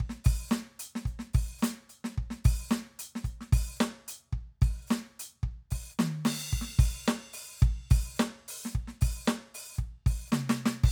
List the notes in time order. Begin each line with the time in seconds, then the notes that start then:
0.01 kick
0.10 snare
0.25 open hi-hat, kick
0.49 snare, hi-hat pedal
0.80 closed hi-hat
0.96 snare
1.06 closed hi-hat, kick
1.20 snare
1.34 open hi-hat, kick
1.59 snare, hi-hat pedal
1.65 closed hi-hat
1.90 closed hi-hat
2.05 snare
2.19 kick
2.31 snare
2.45 open hi-hat, kick
2.70 snare, hi-hat pedal
3.00 closed hi-hat
3.16 snare
3.25 closed hi-hat, kick
3.42 snare
3.53 open hi-hat, kick
3.77 hi-hat pedal
3.81 snare
4.09 closed hi-hat
4.34 kick
4.62 open hi-hat, kick
4.88 snare, hi-hat pedal
5.20 closed hi-hat
5.44 kick
5.72 open hi-hat, kick
5.91 hi-hat pedal
6.00 snare, high tom
6.26 snare, crash
6.54 kick
6.62 snare
6.80 open hi-hat, kick
7.06 snare, hi-hat pedal
7.34 open hi-hat
7.61 kick, hi-hat pedal
7.91 open hi-hat, kick
8.17 snare, hi-hat pedal
8.49 open hi-hat
8.66 snare
8.72 kick, hi-hat pedal
8.88 snare
9.02 open hi-hat, kick
9.26 snare, hi-hat pedal
9.55 open hi-hat
9.76 kick, hi-hat pedal
10.07 open hi-hat, kick
10.28 hi-hat pedal
10.33 snare, mid tom
10.50 snare
10.59 hi-hat pedal
10.67 snare
10.85 kick, crash